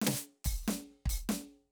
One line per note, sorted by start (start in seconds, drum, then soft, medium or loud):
0.02 snare loud
0.07 snare loud
0.27 snare soft
0.44 kick medium
0.44 percussion loud
0.63 hi-hat pedal soft
0.68 snare loud
0.90 snare soft
1.06 kick medium
1.06 percussion loud
1.29 snare loud
1.29 hi-hat pedal medium